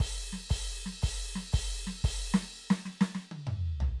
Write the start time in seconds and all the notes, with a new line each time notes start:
0.01 kick, crash
0.33 snare
0.50 kick, crash
0.86 snare
1.02 kick, crash
1.36 snare
1.53 kick, crash
1.87 snare
2.04 kick, crash
2.34 snare
2.71 snare
2.86 snare
3.01 snare
3.15 snare
3.32 high tom
3.47 mid tom
3.81 floor tom